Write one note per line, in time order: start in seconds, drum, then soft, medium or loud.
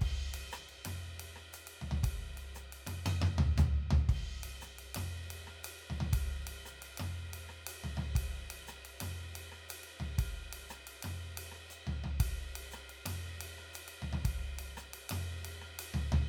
0.01 kick medium
0.01 ride medium
0.34 ride loud
0.52 cross-stick medium
0.52 hi-hat pedal medium
0.69 ride soft
0.85 mid tom medium
0.85 ride loud
1.19 ride loud
1.36 cross-stick medium
1.53 hi-hat pedal medium
1.53 ride medium
1.67 ride medium
1.81 kick soft
1.81 floor tom medium
1.91 floor tom medium
2.03 kick medium
2.03 ride loud
2.37 ride medium
2.55 cross-stick medium
2.55 hi-hat pedal medium
2.72 ride medium
2.87 mid tom medium
2.87 ride loud
3.06 mid tom loud
3.06 ride bell loud
3.22 mid tom loud
3.38 floor tom loud
3.57 floor tom loud
3.57 hi-hat pedal medium
3.90 floor tom loud
4.09 kick medium
4.09 ride medium
4.43 ride loud
4.61 cross-stick medium
4.61 hi-hat pedal medium
4.78 ride medium
4.94 mid tom medium
4.94 ride loud
5.30 ride medium
5.47 cross-stick medium
5.63 hi-hat pedal medium
5.63 ride loud
5.79 ride soft
5.90 floor tom medium
6.00 floor tom medium
6.13 kick medium
6.13 ride loud
6.47 ride loud
6.65 cross-stick medium
6.65 hi-hat pedal medium
6.82 ride medium
6.97 mid tom medium
6.97 ride loud
7.33 ride loud
7.49 cross-stick medium
7.67 hi-hat pedal medium
7.67 ride loud
7.84 floor tom medium
7.97 floor tom medium
8.15 kick medium
8.15 ride loud
8.50 ride loud
8.67 cross-stick medium
8.67 hi-hat pedal medium
8.85 ride medium
9.00 mid tom medium
9.00 ride loud
9.35 ride loud
9.52 cross-stick soft
9.69 hi-hat pedal medium
9.69 ride loud
9.83 ride medium
10.00 floor tom medium
10.18 kick medium
10.18 ride loud
10.53 ride loud
10.69 cross-stick medium
10.69 hi-hat pedal medium
10.87 ride medium
11.03 mid tom medium
11.03 ride loud
11.37 ride loud
11.51 cross-stick medium
11.70 hi-hat pedal medium
11.70 ride bell medium
11.87 floor tom medium
12.04 floor tom medium
12.20 kick medium
12.20 ride loud
12.55 ride loud
12.71 cross-stick medium
12.71 hi-hat pedal medium
12.89 ride medium
13.06 mid tom medium
13.06 ride loud
13.41 ride loud
13.58 cross-stick soft
13.73 hi-hat pedal medium
13.73 ride loud
13.88 ride medium
14.02 kick soft
14.02 floor tom medium
14.13 floor tom medium
14.25 kick medium
14.25 ride loud
14.59 ride loud
14.77 cross-stick medium
14.77 hi-hat pedal medium
14.93 ride loud
15.09 mid tom loud
15.09 ride loud
15.45 ride loud
15.61 cross-stick soft
15.79 hi-hat pedal medium
15.79 ride loud
15.94 floor tom medium
16.12 floor tom loud